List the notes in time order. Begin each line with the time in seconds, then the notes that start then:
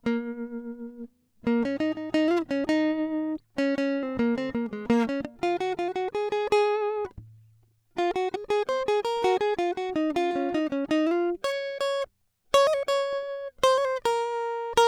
0.07 A#3
1.48 A#3
1.67 C#4
1.82 D#4
1.93 D#4
2.15 E4
2.52 C#4
2.70 D#4
3.59 C#4
3.80 C#4
4.04 C4
4.21 A#3
4.39 C4
4.56 A#3
4.74 G#3
4.91 A#3
5.10 C#4
5.22 A#3
5.44 F4
5.62 F#4
5.80 F4
5.97 F#4
6.16 G#4
6.34 G#4
6.53 G#4
8.00 F4
8.17 F#4
8.35 G#4
8.52 G#4
8.70 C5
8.89 G#4
9.06 A#4
9.26 F#4
9.42 G#4
9.60 F4
9.79 F#4
9.97 D#4
10.12 C#4
10.17 F4
10.37 C#4
10.56 D#4
10.74 C#4
10.92 D#4
11.12 F4
11.45 C#5
11.82 C#5
12.55 C#5
12.68 D#5
12.76 C#5
12.89 C#5
13.64 C5
13.79 C#5
13.90 C5
14.06 A#4
14.78 A#4